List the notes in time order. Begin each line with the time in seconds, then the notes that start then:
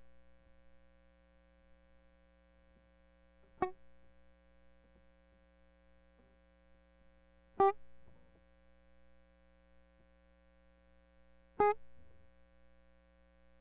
3.63 F#4
7.60 G4
11.61 G#4